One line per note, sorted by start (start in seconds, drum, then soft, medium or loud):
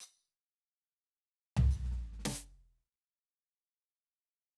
0.00 hi-hat pedal medium
1.57 floor tom loud
1.71 hi-hat pedal soft
1.84 snare soft
1.91 snare soft
1.96 snare soft
2.01 snare soft
2.05 snare soft
2.12 snare soft
2.19 snare soft
2.25 snare medium
2.25 hi-hat pedal medium